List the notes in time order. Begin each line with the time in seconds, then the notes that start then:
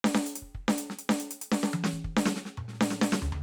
0.04 snare
0.14 snare
0.26 closed hi-hat
0.35 closed hi-hat
0.42 kick
0.54 kick
0.68 snare
0.78 closed hi-hat
0.90 snare
0.98 closed hi-hat
1.09 snare
1.20 closed hi-hat
1.31 closed hi-hat
1.41 closed hi-hat
1.51 snare
1.63 snare
1.73 high tom
1.84 snare
1.93 kick
2.04 kick
2.16 snare
2.25 snare
2.45 snare
2.57 mid tom
2.68 snare
2.73 snare
2.81 snare
2.90 snare
3.01 snare
3.12 snare
3.22 floor tom
3.32 floor tom